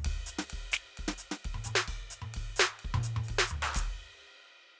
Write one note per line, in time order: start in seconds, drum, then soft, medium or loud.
0.01 hi-hat pedal soft
0.05 kick soft
0.05 ride loud
0.16 kick soft
0.27 hi-hat pedal loud
0.27 ride soft
0.39 snare medium
0.48 hi-hat pedal soft
0.48 ride medium
0.54 kick soft
0.72 snare medium
0.72 hi-hat pedal loud
0.98 kick soft
0.98 ride medium
1.09 snare medium
1.19 hi-hat pedal medium
1.19 ride soft
1.32 snare medium
1.40 hi-hat pedal soft
1.45 kick soft
1.45 ride medium
1.54 kick soft
1.54 mid tom medium
1.65 hi-hat pedal loud
1.65 mid tom medium
1.76 snare loud
1.86 kick soft
1.86 hi-hat pedal soft
1.86 ride bell medium
2.11 hi-hat pedal medium
2.11 ride soft
2.22 mid tom medium
2.35 kick soft
2.35 ride medium
2.45 kick soft
2.57 snare loud
2.57 hi-hat pedal loud
2.80 ride medium
2.85 kick soft
2.91 kick soft
2.91 mid tom loud
3.04 hi-hat pedal medium
3.04 ride soft
3.17 mid tom medium
3.24 hi-hat pedal soft
3.29 kick soft
3.29 ride medium
3.39 snare loud
3.48 floor tom medium
3.48 hi-hat pedal medium
3.63 percussion medium
3.74 kick medium
3.74 percussion soft
3.74 hi-hat pedal loud
3.74 ride medium
3.87 kick soft
4.01 hi-hat pedal soft